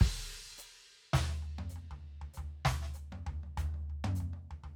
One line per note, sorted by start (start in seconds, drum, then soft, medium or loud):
0.00 kick loud
0.00 crash loud
0.58 hi-hat pedal loud
1.13 snare loud
1.13 floor tom loud
1.13 hi-hat pedal medium
1.28 snare soft
1.42 floor tom soft
1.58 mid tom medium
1.69 hi-hat pedal medium
1.76 floor tom soft
1.91 floor tom medium
2.21 floor tom medium
2.33 floor tom medium
2.33 hi-hat pedal medium
2.65 snare loud
2.65 floor tom loud
2.82 snare soft
2.94 floor tom soft
2.94 hi-hat pedal medium
3.12 mid tom medium
3.27 floor tom medium
3.43 mid tom soft
3.57 floor tom loud
3.57 hi-hat pedal medium
3.74 mid tom soft
3.90 floor tom soft
4.04 mid tom loud
4.15 hi-hat pedal medium
4.20 floor tom medium
4.33 mid tom soft
4.51 floor tom medium
4.63 floor tom medium